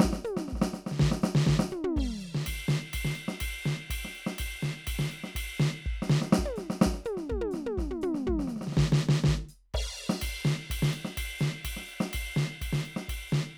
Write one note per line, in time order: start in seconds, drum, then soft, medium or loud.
0.01 snare loud
0.05 kick soft
0.11 kick soft
0.11 snare medium
0.25 hi-hat pedal medium
0.25 mid tom loud
0.37 snare medium
0.49 snare soft
0.53 kick soft
0.53 snare soft
0.62 snare loud
0.74 snare soft
0.74 hi-hat pedal medium
0.87 snare medium
0.92 snare medium
1.00 kick soft
1.00 snare loud
1.12 snare medium
1.22 snare loud
1.22 hi-hat pedal medium
1.36 snare loud
1.47 kick soft
1.47 snare loud
1.60 snare loud
1.70 floor tom medium
1.70 hi-hat pedal medium
1.84 floor tom loud
1.96 kick soft
1.96 floor tom soft
1.96 crash medium
2.20 hi-hat pedal medium
2.35 snare medium
2.47 kick soft
2.47 ride loud
2.54 kick soft
2.68 snare loud
2.68 hi-hat pedal medium
2.94 kick soft
2.94 ride bell loud
3.01 kick soft
3.05 snare medium
3.14 hi-hat pedal medium
3.14 ride soft
3.29 snare medium
3.41 kick soft
3.41 ride bell loud
3.62 hi-hat pedal medium
3.66 snare medium
3.91 kick soft
3.91 ride bell loud
3.97 kick soft
4.05 snare soft
4.11 hi-hat pedal medium
4.15 ride soft
4.27 snare medium
4.39 kick soft
4.39 ride bell loud
4.46 kick soft
4.60 snare medium
4.60 hi-hat pedal medium
4.88 kick soft
4.88 ride bell loud
5.00 snare medium
5.08 hi-hat pedal medium
5.12 ride soft
5.24 snare soft
5.36 kick soft
5.36 ride bell loud
5.42 kick soft
5.56 hi-hat pedal medium
5.60 snare loud
5.87 kick soft
5.93 kick soft
6.03 snare medium
6.09 snare loud
6.09 hi-hat pedal medium
6.22 snare medium
6.33 snare loud
6.39 kick soft
6.45 kick soft
6.45 high tom loud
6.56 snare soft
6.56 hi-hat pedal medium
6.71 snare medium
6.82 snare loud
6.86 kick soft
6.93 kick soft
6.93 snare soft
7.06 hi-hat pedal medium
7.06 mid tom loud
7.18 snare soft
7.30 kick soft
7.30 mid tom loud
7.38 kick soft
7.38 mid tom loud
7.52 snare soft
7.52 hi-hat pedal medium
7.67 mid tom loud
7.78 kick soft
7.78 snare soft
7.84 kick soft
7.91 floor tom medium
8.02 hi-hat pedal medium
8.02 floor tom loud
8.15 snare soft
8.27 kick soft
8.27 floor tom loud
8.40 snare soft
8.48 snare soft
8.48 hi-hat pedal medium
8.57 snare soft
8.62 snare medium
8.68 snare medium
8.73 snare soft
8.78 kick soft
8.78 snare loud
8.85 kick soft
8.93 snare loud
8.99 hi-hat pedal medium
9.09 snare loud
9.24 kick soft
9.24 snare loud
9.34 kick soft
9.49 hi-hat pedal medium
9.74 kick soft
9.74 crash loud
9.82 kick soft
9.87 kick soft
9.98 hi-hat pedal medium
10.10 snare medium
10.22 kick soft
10.22 ride bell loud
10.29 kick soft
10.45 snare loud
10.45 hi-hat pedal medium
10.71 kick soft
10.71 ride bell loud
10.77 kick soft
10.83 snare loud
10.92 hi-hat pedal medium
10.92 ride soft
11.05 snare medium
11.18 kick soft
11.18 ride bell loud
11.39 snare loud
11.39 hi-hat pedal medium
11.65 kick soft
11.65 ride bell loud
11.77 snare soft
11.86 hi-hat pedal medium
11.86 ride soft
12.01 snare medium
12.14 kick soft
12.14 ride bell loud
12.21 kick soft
12.34 snare loud
12.34 hi-hat pedal medium
12.62 kick soft
12.62 ride bell loud
12.73 snare medium
12.80 hi-hat pedal medium
12.86 ride soft
12.97 snare medium
13.09 kick soft
13.09 ride loud
13.29 snare loud
13.29 hi-hat pedal medium